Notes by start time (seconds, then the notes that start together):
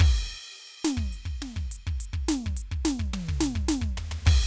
0.00 kick, crash
0.75 hi-hat pedal
0.85 snare
0.97 kick
1.12 closed hi-hat
1.25 kick
1.42 snare
1.56 kick
1.71 closed hi-hat
1.87 kick
2.00 closed hi-hat
2.13 kick
2.28 snare
2.46 kick
2.57 closed hi-hat
2.71 kick
2.85 snare
2.99 kick
3.13 high tom
3.28 kick
3.41 snare
3.55 kick
3.68 snare
3.81 kick
3.97 floor tom
4.11 floor tom
4.25 kick, crash